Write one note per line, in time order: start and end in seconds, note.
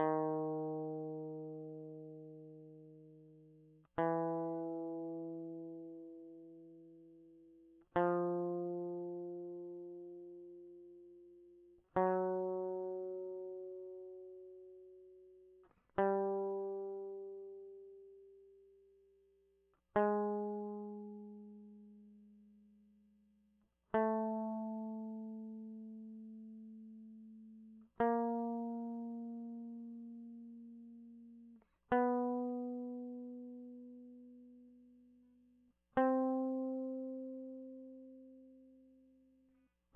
0.00 3.89 D#3
3.99 7.88 E3
7.97 11.90 F3
11.97 15.74 F#3
15.99 19.72 G3
19.96 23.68 G#3
23.94 27.85 A3
28.00 31.61 A#3
31.92 35.73 B3
35.97 39.69 C4